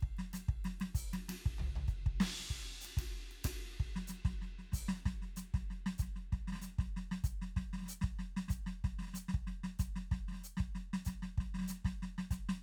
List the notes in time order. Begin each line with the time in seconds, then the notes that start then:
0.01 kick, ride bell
0.17 snare, ride
0.34 snare, hi-hat pedal, ride bell
0.49 kick
0.65 snare, ride
0.80 snare, ride
0.95 kick, hi-hat pedal
1.13 snare, ride
1.29 snare, ride
1.46 kick
1.59 floor tom, high tom
1.76 floor tom, high tom
1.88 kick, hi-hat pedal
2.06 kick
2.20 snare, ride
2.39 snare
2.50 kick, ride
2.69 snare
2.81 hi-hat pedal, ride
2.97 kick, ride
3.14 snare
3.31 ride
3.44 kick, cross-stick, hi-hat pedal, ride
3.64 snare
3.80 kick
3.96 snare
4.08 snare, hi-hat pedal
4.25 kick, snare
4.42 snare
4.59 snare
4.72 kick, snare, hi-hat pedal
4.89 snare
5.06 kick, snare
5.22 snare
5.37 snare, hi-hat pedal
5.54 kick, snare
5.71 snare
5.86 snare
5.99 kick, snare, hi-hat pedal
6.16 snare
6.32 kick, snare
6.48 snare
6.52 snare
6.56 snare
6.59 snare
6.62 snare, hi-hat pedal
6.64 snare
6.79 kick, snare
6.97 snare
7.12 snare
7.24 kick, snare, hi-hat pedal
7.42 snare
7.57 kick, snare
7.73 snare
7.78 snare
7.82 snare
7.86 snare, hi-hat pedal
8.02 kick, snare
8.19 snare
8.37 snare
8.48 kick, snare, hi-hat pedal
8.67 snare
8.84 kick, snare
8.99 snare
9.02 snare
9.07 snare
9.14 snare, hi-hat pedal
9.29 snare
9.34 kick
9.47 snare
9.64 snare
9.79 kick, snare, hi-hat pedal
9.96 snare
10.12 kick, snare
10.28 snare
10.32 snare
10.34 snare
10.41 snare, hi-hat pedal
10.57 kick, snare
10.75 snare
10.94 snare
11.05 kick, snare, hi-hat pedal
11.23 snare
11.38 kick, snare
11.54 snare
11.59 snare
11.61 snare
11.64 snare
11.68 snare, hi-hat pedal
11.85 kick, snare
12.03 snare
12.18 snare
12.31 kick, snare, hi-hat pedal
12.49 snare